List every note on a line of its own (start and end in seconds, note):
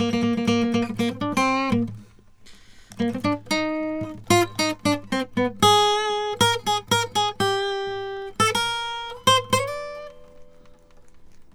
0.01 0.12 A#3
0.14 0.24 A#3
0.24 0.37 A#3
0.39 0.47 A#3
0.49 0.58 A#3
0.59 0.74 A#3
0.75 0.87 A#3
1.00 1.13 A#3
1.22 1.37 D4
1.38 1.71 C4
1.71 1.88 A#3
3.01 3.12 A#3
3.15 3.25 C4
3.25 3.40 D4
3.51 3.73 D#4
3.51 4.16 D#4
4.31 4.48 F4
4.60 4.76 D#4
4.60 4.77 D#4
4.86 5.07 D4
5.13 5.27 C4
5.38 5.52 B3
5.63 6.36 G#4
6.41 6.60 A#4
6.67 6.83 G#4
6.92 7.08 A#4
7.16 7.34 G#4
7.41 8.33 G4
8.40 8.53 A4
8.56 9.18 A#4
9.28 9.44 C5
9.53 9.63 C5
9.63 9.99 D5